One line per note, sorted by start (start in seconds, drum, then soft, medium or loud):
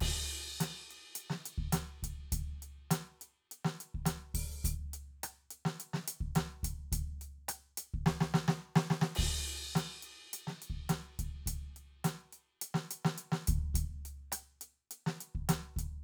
0.01 kick medium
0.01 crash loud
0.31 closed hi-hat soft
0.61 snare medium
0.61 closed hi-hat medium
0.91 closed hi-hat soft
1.16 closed hi-hat medium
1.30 snare medium
1.46 closed hi-hat medium
1.58 kick medium
1.73 snare medium
1.73 closed hi-hat loud
2.03 kick medium
2.03 closed hi-hat medium
2.32 kick medium
2.32 closed hi-hat loud
2.63 closed hi-hat medium
2.91 snare medium
2.91 closed hi-hat loud
3.21 closed hi-hat medium
3.52 closed hi-hat medium
3.65 snare medium
3.81 closed hi-hat medium
3.95 kick medium
4.06 snare medium
4.06 closed hi-hat loud
4.35 kick medium
4.35 open hi-hat loud
4.65 kick medium
4.65 hi-hat pedal loud
4.65 open hi-hat loud
4.94 closed hi-hat medium
5.24 cross-stick medium
5.24 closed hi-hat loud
5.51 closed hi-hat medium
5.65 snare medium
5.80 closed hi-hat medium
5.94 snare medium
6.08 closed hi-hat loud
6.21 kick medium
6.36 snare loud
6.36 closed hi-hat medium
6.63 kick medium
6.63 closed hi-hat loud
6.92 kick medium
6.92 closed hi-hat loud
7.21 open hi-hat medium
7.49 cross-stick medium
7.49 closed hi-hat loud
7.78 closed hi-hat loud
7.94 kick medium
8.06 snare loud
8.21 snare medium
8.34 snare loud
8.48 snare loud
8.76 snare loud
8.90 snare medium
9.02 snare medium
9.15 kick medium
9.15 crash loud
9.48 open hi-hat soft
9.76 snare medium
9.76 open hi-hat medium
10.03 closed hi-hat medium
10.33 closed hi-hat loud
10.47 snare medium
10.62 open hi-hat medium
10.70 kick medium
10.90 snare medium
10.90 closed hi-hat medium
11.19 kick medium
11.19 closed hi-hat medium
11.46 kick medium
11.46 closed hi-hat loud
11.76 open hi-hat soft
12.05 snare medium
12.05 open hi-hat loud
12.33 open hi-hat medium
12.62 closed hi-hat loud
12.75 snare medium
12.91 closed hi-hat loud
13.05 snare medium
13.18 closed hi-hat medium
13.32 snare medium
13.48 kick loud
13.48 closed hi-hat loud
13.75 kick medium
13.75 closed hi-hat loud
14.05 open hi-hat medium
14.32 cross-stick medium
14.32 closed hi-hat loud
14.61 closed hi-hat medium
14.91 closed hi-hat medium
15.07 snare medium
15.21 closed hi-hat medium
15.35 kick medium
15.49 snare loud
15.49 closed hi-hat loud
15.77 kick medium
15.77 closed hi-hat medium